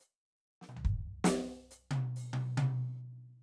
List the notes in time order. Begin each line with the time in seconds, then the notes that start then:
0.02 hi-hat pedal
0.61 snare
0.69 high tom
0.77 floor tom
0.85 kick
1.24 open hi-hat, snare
1.33 open hi-hat
1.71 hi-hat pedal
1.91 high tom
2.16 hi-hat pedal
2.33 high tom
2.57 high tom